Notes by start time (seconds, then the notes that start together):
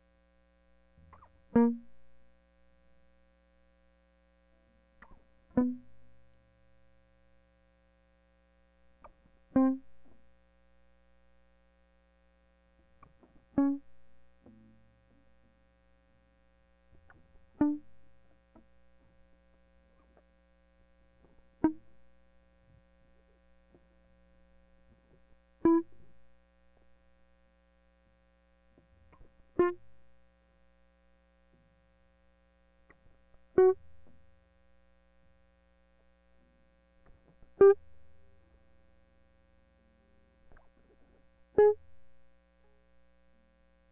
1.57 A#3
5.59 B3
9.57 C4
13.59 C#4
17.62 D4
21.65 D#4
25.66 E4
29.60 F4
33.59 F#4
37.62 G4
41.59 G#4